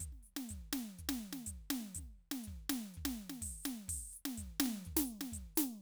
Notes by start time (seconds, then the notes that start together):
0.01 closed hi-hat, kick
0.13 snare
0.24 closed hi-hat, hi-hat pedal
0.37 snare
0.50 closed hi-hat, kick
0.74 snare
0.99 kick, closed hi-hat
1.10 snare
1.33 snare
1.47 closed hi-hat, kick
1.71 snare
1.81 snare
1.95 closed hi-hat, kick, snare
2.32 snare
2.45 kick, closed hi-hat
2.70 snare, hi-hat pedal
2.95 kick, closed hi-hat
3.06 snare
3.30 snare
3.42 open hi-hat, kick
3.64 snare, hi-hat pedal
3.89 open hi-hat, kick
3.94 snare
4.13 open hi-hat, hi-hat pedal
4.26 snare
4.38 closed hi-hat, kick
4.43 kick
4.61 snare, hi-hat pedal
4.66 snare
4.86 kick, closed hi-hat
4.92 kick
4.97 snare
5.05 hi-hat pedal
5.10 closed hi-hat
5.22 snare
5.33 closed hi-hat, kick
5.38 kick
5.56 snare, hi-hat pedal